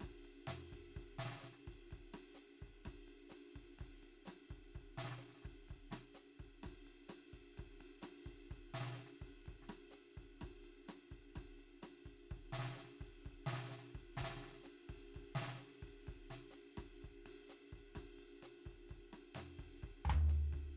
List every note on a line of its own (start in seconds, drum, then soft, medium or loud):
0.01 kick soft
0.01 cross-stick soft
0.01 snare soft
0.01 ride medium
0.09 kick soft
0.25 ride soft
0.48 snare medium
0.48 hi-hat pedal medium
0.48 mid tom soft
0.48 ride medium
0.73 kick soft
0.73 ride soft
0.78 kick soft
0.97 kick soft
0.97 ride soft
1.02 kick soft
1.19 snare medium
1.19 ride medium
1.26 snare soft
1.32 snare soft
1.38 snare soft
1.42 snare soft
1.42 hi-hat pedal medium
1.42 ride soft
1.53 snare soft
1.60 snare soft
1.68 kick soft
1.68 ride medium
1.73 kick soft
1.92 kick soft
1.92 ride soft
1.98 kick soft
2.14 cross-stick soft
2.14 ride medium
2.35 hi-hat pedal medium
2.62 kick soft
2.62 ride soft
2.68 kick soft
2.86 kick soft
2.86 cross-stick soft
2.86 ride medium
2.93 kick soft
3.09 ride soft
3.30 cross-stick soft
3.30 hi-hat pedal medium
3.30 ride medium
3.56 kick soft
3.56 ride soft
3.79 kick soft
3.79 snare soft
3.79 ride medium
3.87 kick soft
4.04 ride soft
4.26 cross-stick soft
4.26 hi-hat pedal medium
4.26 ride medium
4.51 kick soft
4.51 ride soft
4.56 kick soft
4.76 kick soft
4.76 ride soft
4.81 kick soft
4.98 snare medium
4.98 ride medium
5.05 snare soft
5.11 snare soft
5.18 snare soft
5.18 hi-hat pedal medium
5.24 snare soft
5.24 ride soft
5.29 snare soft
5.35 snare soft
5.43 kick soft
5.43 snare soft
5.43 ride soft
5.51 kick soft
5.69 kick soft
5.69 ride soft
5.76 kick soft
5.92 cross-stick medium
5.92 snare soft
5.92 ride medium
6.15 hi-hat pedal medium
6.15 ride soft
6.40 kick soft
6.40 ride soft
6.45 kick soft
6.63 kick soft
6.63 cross-stick soft
6.63 snare soft
6.63 hi-hat pedal soft
6.63 ride medium
6.71 kick soft
6.88 ride soft
6.97 snare soft
7.09 cross-stick soft
7.09 snare soft
7.09 hi-hat pedal medium
7.09 ride medium
7.34 kick soft
7.34 ride soft
7.58 kick soft
7.58 cross-stick soft
7.58 ride soft
7.65 kick soft
7.71 snare soft
7.80 snare soft
7.80 ride medium
8.02 cross-stick soft
8.02 hi-hat pedal medium
8.02 ride medium
8.27 kick soft
8.27 ride soft
8.32 kick soft
8.51 kick soft
8.51 ride soft
8.57 kick soft
8.75 snare medium
8.75 ride medium
8.81 snare medium
8.87 snare soft
8.92 snare soft
8.92 hi-hat pedal medium
8.99 snare soft
8.99 ride soft
9.06 snare soft
9.22 kick soft
9.22 ride soft
9.27 kick soft
9.47 kick soft
9.47 ride soft
9.53 kick soft
9.62 snare soft
9.69 cross-stick soft
9.69 ride medium
9.92 hi-hat pedal medium
9.92 ride soft
10.18 kick soft
10.18 ride soft
10.23 kick soft
10.42 kick soft
10.42 cross-stick soft
10.42 ride medium
10.49 kick soft
10.65 ride soft
10.89 cross-stick soft
10.89 snare soft
10.89 hi-hat pedal medium
10.89 ride medium
11.12 kick soft
11.12 ride soft
11.17 kick soft
11.36 kick soft
11.36 cross-stick soft
11.36 ride medium
11.43 kick soft
11.60 ride soft
11.83 cross-stick soft
11.83 snare soft
11.83 hi-hat pedal medium
11.83 ride medium
12.06 kick soft
12.06 ride soft
12.32 kick soft
12.32 ride soft
12.37 kick soft
12.53 snare medium
12.53 ride medium
12.59 snare medium
12.65 snare soft
12.71 snare soft
12.76 snare soft
12.76 hi-hat pedal medium
12.76 ride soft
12.85 snare soft
12.92 snare soft
12.98 kick soft
12.98 snare soft
12.98 ride soft
13.03 kick soft
13.03 snare soft
13.07 snare soft
13.10 snare soft
13.13 snare soft
13.22 hi-hat pedal soft
13.22 ride soft
13.26 kick soft
13.31 kick soft
13.47 snare medium
13.47 ride medium
13.53 snare medium
13.59 snare soft
13.64 snare soft
13.69 snare soft
13.69 hi-hat pedal medium
13.69 ride soft
13.79 snare soft
13.84 snare soft
13.89 snare soft
13.93 kick soft
13.93 snare soft
13.93 ride soft
14.01 kick soft
14.18 kick soft
14.18 snare medium
14.18 ride medium
14.24 kick soft
14.24 snare medium
14.30 snare soft
14.37 snare soft
14.42 snare soft
14.42 ride soft
14.48 snare soft
14.53 snare soft
14.59 snare soft
14.61 snare soft
14.61 hi-hat pedal medium
14.66 snare soft
14.66 ride medium
14.90 kick soft
14.90 ride medium
14.95 kick soft
14.95 snare soft
15.15 kick soft
15.15 ride soft
15.22 kick soft
15.36 snare medium
15.36 ride medium
15.42 snare medium
15.48 snare soft
15.56 snare soft
15.56 hi-hat pedal medium
15.60 snare soft
15.60 ride soft
15.67 snare soft
15.73 snare soft
15.78 snare soft
15.83 kick soft
15.83 ride soft
15.88 kick soft
16.08 kick soft
16.08 ride soft
16.14 kick soft
16.31 snare soft
16.31 ride medium
16.51 hi-hat pedal medium
16.51 ride soft
16.77 kick soft
16.77 cross-stick soft
16.77 snare soft
16.77 ride medium
16.84 kick soft
17.03 kick soft
17.03 ride soft
17.10 kick soft
17.26 snare soft
17.26 ride medium
17.50 hi-hat pedal medium
17.73 kick soft
17.78 kick soft
17.96 kick soft
17.96 cross-stick soft
17.96 snare soft
17.96 hi-hat pedal soft
17.96 ride medium
18.03 kick soft
18.19 ride soft
18.43 snare soft
18.43 hi-hat pedal medium
18.43 ride medium
18.66 kick soft
18.66 ride soft
18.72 kick soft
18.89 kick soft
18.89 hi-hat pedal soft
18.89 ride soft
18.96 kick soft
19.13 cross-stick soft
19.13 snare soft
19.13 ride medium
19.35 cross-stick soft
19.35 snare soft
19.35 hi-hat pedal loud
19.35 mid tom soft
19.35 ride medium
19.59 kick soft
19.59 ride soft
19.65 kick soft
19.83 kick soft
19.83 ride soft
20.06 floor tom loud
20.10 floor tom loud
20.29 hi-hat pedal medium
20.29 ride soft
20.53 kick soft
20.53 ride soft
20.59 kick soft